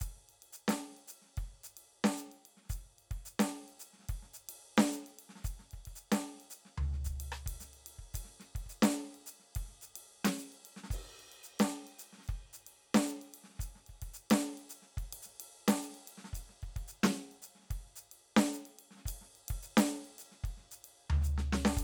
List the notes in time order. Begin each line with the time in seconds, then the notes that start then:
0.01 kick, hi-hat pedal, ride
0.17 snare
0.30 ride
0.43 ride
0.53 hi-hat pedal
0.69 snare, ride
0.71 snare
0.97 ride
1.08 hi-hat pedal, ride
1.22 snare
1.25 snare
1.38 kick, ride
1.48 snare
1.64 hi-hat pedal, ride
1.78 ride
2.05 snare, ride
2.18 hi-hat pedal
2.32 ride
2.46 ride
2.58 snare
2.62 snare
2.66 snare
2.70 kick, snare, hi-hat pedal
2.74 ride
2.99 ride
3.12 kick, ride
3.26 hi-hat pedal
3.40 snare, ride
3.69 ride
3.80 hi-hat pedal, ride
3.94 snare
4.00 snare
4.04 snare
4.10 kick, ride
4.23 snare
4.34 hi-hat pedal, ride
4.50 ride
4.78 snare, ride
4.93 snare, hi-hat pedal
5.07 ride
5.20 ride
5.30 snare
5.36 snare
5.41 snare
5.45 kick, hi-hat pedal, ride
5.60 snare
5.72 kick, ride
5.86 kick, ride
5.96 hi-hat pedal
6.12 snare, ride
6.41 ride
6.51 hi-hat pedal, ride
6.66 snare
6.78 floor tom
6.94 snare
7.05 kick, hi-hat pedal, ride
7.21 ride
7.33 cross-stick
7.47 kick, ride
7.61 snare, hi-hat pedal
7.74 ride
7.87 ride
7.99 kick, snare
8.15 kick, hi-hat pedal, ride
8.25 snare
8.41 snare, ride
8.56 kick, ride
8.67 kick, hi-hat pedal
8.83 snare, ride
9.15 ride
9.27 hi-hat pedal, ride
9.40 snare
9.56 kick, ride
9.69 snare
9.82 hi-hat pedal, ride
9.96 ride
10.25 snare, ride
10.39 hi-hat pedal
10.53 ride
10.66 ride
10.77 snare
10.84 snare
10.89 kick, snare, hi-hat pedal, crash
11.20 ride
11.32 ride
11.44 hi-hat pedal
11.60 snare, ride
11.88 ride
12.00 hi-hat pedal, ride
12.13 snare
12.19 snare
12.23 snare, hi-hat pedal
12.29 kick, ride
12.54 hi-hat pedal, ride
12.67 ride
12.95 snare, ride
13.08 snare, hi-hat pedal
13.15 snare
13.22 ride
13.32 hi-hat pedal, ride
13.45 snare
13.50 snare
13.56 snare
13.60 kick, hi-hat pedal, ride
13.76 snare
13.87 kick, ride
14.02 kick, ride
14.14 hi-hat pedal
14.31 snare, ride
14.58 snare, ride
14.70 hi-hat pedal, ride
14.83 snare
14.98 kick, ride
15.13 ride
15.23 snare, hi-hat pedal
15.41 ride
15.69 snare, ride
15.83 hi-hat pedal
15.95 ride
16.07 hi-hat pedal, ride
16.18 snare
16.25 snare
16.34 kick, hi-hat pedal, ride
16.50 snare
16.63 kick, ride
16.77 kick, ride
16.89 hi-hat pedal
17.04 snare, ride
17.24 snare
17.32 ride
17.43 hi-hat pedal, ride
17.56 snare
17.60 snare
17.63 snare
17.66 snare
17.71 kick, ride
17.84 snare
17.88 snare
17.96 hi-hat pedal
18.01 ride
18.12 ride
18.37 snare, ride
18.54 hi-hat pedal
18.66 ride
18.80 ride
18.91 snare
18.96 snare
18.98 snare
19.06 kick, hi-hat pedal, ride
19.22 snare
19.36 ride
19.49 kick, ride
19.63 hi-hat pedal
19.78 snare, ride
19.91 snare
20.05 ride
20.19 hi-hat pedal, ride
20.32 snare
20.44 kick, ride
20.58 snare
20.62 snare
20.72 hi-hat pedal, ride
20.85 ride
21.11 floor tom
21.22 snare, hi-hat pedal
21.39 snare
21.53 snare
21.66 snare
21.77 kick, hi-hat pedal, ride